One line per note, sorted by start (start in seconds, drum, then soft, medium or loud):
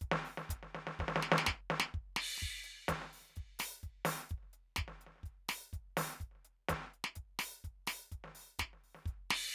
0.01 closed hi-hat medium
0.01 kick soft
0.12 snare medium
0.25 open hi-hat soft
0.37 snare soft
0.49 closed hi-hat loud
0.49 kick soft
0.63 snare soft
0.75 snare soft
0.87 snare soft
0.99 kick soft
0.99 snare soft
1.08 snare medium
1.16 snare medium
1.23 snare medium
1.32 snare loud
1.38 snare loud
1.44 kick soft
1.44 snare loud
1.44 hi-hat pedal soft
1.70 snare medium
1.80 snare loud
1.94 kick soft
2.16 snare loud
2.16 crash loud
2.38 snare soft
2.42 kick soft
2.64 open hi-hat soft
2.88 closed hi-hat medium
2.88 kick soft
2.88 snare medium
3.02 snare soft
3.13 open hi-hat soft
3.21 snare soft
3.26 snare soft
3.29 snare soft
3.36 kick soft
3.36 closed hi-hat soft
3.59 open hi-hat loud
3.59 snare medium
3.83 kick soft
3.83 closed hi-hat soft
4.05 open hi-hat loud
4.05 snare medium
4.29 closed hi-hat medium
4.29 kick soft
4.38 snare soft
4.43 snare soft
4.53 open hi-hat soft
4.76 closed hi-hat medium
4.76 kick soft
4.76 snare medium
4.88 snare soft
5.01 open hi-hat soft
5.06 snare soft
5.12 snare soft
5.16 snare soft
5.18 snare soft
5.23 kick soft
5.23 closed hi-hat soft
5.49 open hi-hat medium
5.49 snare medium
5.73 closed hi-hat soft
5.73 kick soft
5.97 open hi-hat loud
5.97 snare medium
6.20 closed hi-hat soft
6.20 kick soft
6.31 snare soft
6.35 snare soft
6.45 open hi-hat soft
6.69 closed hi-hat loud
6.69 kick soft
6.69 snare medium
6.93 open hi-hat soft
7.04 snare medium
7.15 closed hi-hat medium
7.15 kick soft
7.39 open hi-hat medium
7.39 snare loud
7.64 closed hi-hat soft
7.64 kick soft
7.87 open hi-hat medium
7.87 snare loud
8.12 closed hi-hat soft
8.12 kick soft
8.24 snare soft
8.28 snare soft
8.31 open hi-hat medium
8.31 snare soft
8.59 closed hi-hat medium
8.59 kick soft
8.59 snare loud
8.73 snare soft
8.84 open hi-hat soft
8.95 snare soft
9.03 kick soft
9.03 snare soft
9.07 closed hi-hat soft
9.30 snare loud
9.30 crash loud